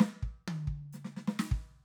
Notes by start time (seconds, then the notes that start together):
0.01 snare
0.23 kick
0.48 high tom
0.68 kick
0.93 snare, hi-hat pedal
1.05 snare
1.17 snare
1.28 snare
1.40 snare
1.52 kick